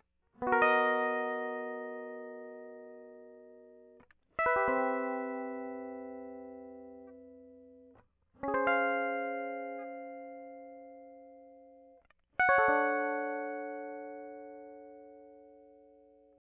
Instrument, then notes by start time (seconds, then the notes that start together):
electric guitar
0.42 B3
0.47 F#4
0.53 A#4
0.62 D#5
4.01 B3
4.39 E5
4.46 B4
4.56 G4
4.68 C4
8.44 C#4
8.48 G#4
8.54 C5
8.67 F5
12.40 F#5
12.49 C#5
12.59 A4
12.69 D4